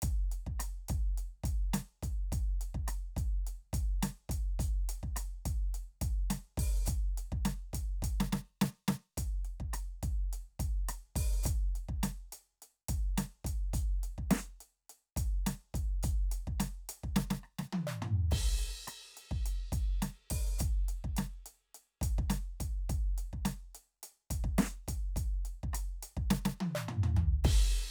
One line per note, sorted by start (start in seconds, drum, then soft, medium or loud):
0.03 kick medium
0.03 closed hi-hat loud
0.32 closed hi-hat medium
0.46 kick soft
0.59 cross-stick medium
0.59 closed hi-hat loud
0.88 kick medium
0.88 closed hi-hat loud
1.18 closed hi-hat medium
1.44 kick medium
1.44 closed hi-hat medium
1.73 snare medium
1.73 closed hi-hat loud
2.03 kick medium
2.03 closed hi-hat medium
2.32 kick medium
2.32 closed hi-hat loud
2.61 closed hi-hat medium
2.74 kick soft
2.88 cross-stick medium
2.88 closed hi-hat loud
3.16 kick medium
3.16 closed hi-hat medium
3.47 closed hi-hat medium
3.73 kick medium
3.73 closed hi-hat loud
4.03 snare medium
4.03 closed hi-hat loud
4.29 kick medium
4.29 closed hi-hat loud
4.59 closed hi-hat loud
4.59 kick medium
4.89 closed hi-hat loud
5.03 kick soft
5.16 cross-stick medium
5.16 closed hi-hat loud
5.45 kick medium
5.45 closed hi-hat loud
5.52 kick soft
5.74 closed hi-hat medium
6.01 kick medium
6.01 closed hi-hat loud
6.30 snare medium
6.30 closed hi-hat loud
6.57 kick medium
6.57 open hi-hat loud
6.86 kick medium
6.86 closed hi-hat loud
6.86 hi-hat pedal loud
7.17 closed hi-hat medium
7.32 kick medium
7.45 snare medium
7.45 closed hi-hat loud
7.73 kick medium
7.73 closed hi-hat loud
8.02 kick medium
8.02 closed hi-hat loud
8.20 snare loud
8.32 snare loud
8.61 snare loud
8.88 snare loud
9.17 kick medium
9.17 closed hi-hat loud
9.45 closed hi-hat soft
9.60 kick soft
9.73 cross-stick medium
9.73 closed hi-hat loud
10.03 kick medium
10.03 closed hi-hat medium
10.33 closed hi-hat medium
10.59 kick medium
10.59 closed hi-hat loud
10.89 cross-stick medium
10.89 closed hi-hat loud
11.15 kick medium
11.15 open hi-hat loud
11.43 kick medium
11.43 closed hi-hat loud
11.43 hi-hat pedal loud
11.75 closed hi-hat medium
11.89 kick soft
11.96 kick soft
12.03 snare medium
12.03 closed hi-hat loud
12.32 closed hi-hat loud
12.62 closed hi-hat medium
12.88 kick medium
12.88 closed hi-hat loud
13.18 snare medium
13.18 closed hi-hat loud
13.44 kick medium
13.44 closed hi-hat loud
13.73 closed hi-hat loud
13.73 kick medium
14.03 closed hi-hat medium
14.18 kick soft
14.31 snare loud
14.31 closed hi-hat loud
14.60 closed hi-hat medium
14.89 closed hi-hat medium
15.16 kick medium
15.16 closed hi-hat loud
15.46 snare medium
15.46 closed hi-hat loud
15.74 kick medium
15.74 closed hi-hat medium
16.03 closed hi-hat loud
16.03 kick medium
16.31 closed hi-hat medium
16.47 kick soft
16.60 snare medium
16.60 closed hi-hat loud
16.89 closed hi-hat loud
17.03 kick medium
17.16 snare loud
17.30 snare medium
17.43 cross-stick medium
17.59 snare medium
17.73 high tom loud
17.87 percussion loud
18.02 mid tom loud
18.31 kick medium
18.31 crash loud
18.59 closed hi-hat medium
18.87 cross-stick medium
18.87 closed hi-hat loud
19.17 closed hi-hat medium
19.31 kick medium
19.46 closed hi-hat medium
19.72 kick medium
19.72 closed hi-hat medium
20.02 snare medium
20.02 closed hi-hat loud
20.30 kick medium
20.30 open hi-hat loud
20.58 kick medium
20.58 closed hi-hat loud
20.58 hi-hat pedal loud
20.88 closed hi-hat medium
21.04 kick soft
21.17 snare medium
21.17 closed hi-hat loud
21.46 closed hi-hat medium
21.74 closed hi-hat medium
22.01 kick medium
22.01 closed hi-hat loud
22.18 kick medium
22.30 snare medium
22.30 closed hi-hat loud
22.60 kick medium
22.60 closed hi-hat loud
22.89 kick medium
22.89 closed hi-hat medium
23.18 closed hi-hat medium
23.33 kick soft
23.45 snare medium
23.45 closed hi-hat loud
23.75 closed hi-hat medium
24.03 closed hi-hat loud
24.30 kick medium
24.30 closed hi-hat loud
24.44 kick medium
24.58 snare loud
24.58 closed hi-hat loud
24.88 kick medium
24.88 closed hi-hat loud
25.16 kick medium
25.16 closed hi-hat loud
25.45 closed hi-hat medium
25.63 kick soft
25.73 cross-stick medium
25.73 closed hi-hat loud
26.03 closed hi-hat loud
26.17 kick medium
26.30 snare loud
26.45 snare loud
26.60 high tom loud
26.75 percussion loud
26.88 mid tom loud
27.03 mid tom loud
27.16 floor tom loud
27.44 kick loud
27.44 crash loud
27.44 ride loud